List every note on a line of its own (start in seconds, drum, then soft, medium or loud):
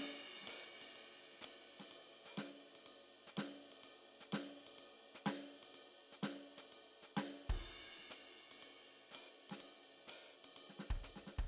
0.01 ride medium
0.37 snare soft
0.41 snare soft
0.43 snare soft
0.48 hi-hat pedal loud
0.48 ride loud
0.82 ride medium
0.92 hi-hat pedal soft
0.96 ride medium
1.33 snare soft
1.42 hi-hat pedal loud
1.42 ride loud
1.80 snare soft
1.80 ride medium
1.85 hi-hat pedal soft
1.92 ride medium
2.26 hi-hat pedal medium
2.38 snare soft
2.38 ride loud
2.76 ride medium
2.80 hi-hat pedal soft
2.87 ride medium
3.27 hi-hat pedal loud
3.38 snare medium
3.38 ride loud
3.70 snare soft
3.70 ride medium
3.75 hi-hat pedal soft
3.84 ride medium
4.21 hi-hat pedal loud
4.33 snare medium
4.33 ride loud
4.67 hi-hat pedal soft
4.67 ride medium
4.79 ride medium
5.15 hi-hat pedal loud
5.26 snare medium
5.26 ride loud
5.63 hi-hat pedal soft
5.63 ride medium
5.75 ride medium
6.13 hi-hat pedal medium
6.23 snare medium
6.23 ride loud
6.58 hi-hat pedal loud
6.58 ride medium
6.73 ride medium
7.03 hi-hat pedal medium
7.17 snare medium
7.17 ride loud
7.50 kick medium
7.50 ride medium
7.99 snare soft
8.11 hi-hat pedal loud
8.11 ride medium
8.52 ride medium
8.57 hi-hat pedal soft
8.63 ride medium
9.12 hi-hat pedal medium
9.12 ride loud
9.34 hi-hat pedal soft
9.50 snare soft
9.50 ride medium
9.58 hi-hat pedal soft
9.58 ride medium
9.98 snare soft
10.08 hi-hat pedal loud
10.08 ride medium
10.45 ride medium
10.50 hi-hat pedal soft
10.57 ride medium
10.70 snare soft
10.79 snare soft
10.91 kick soft
11.04 hi-hat pedal loud
11.04 ride medium
11.16 snare soft
11.27 snare soft
11.39 kick soft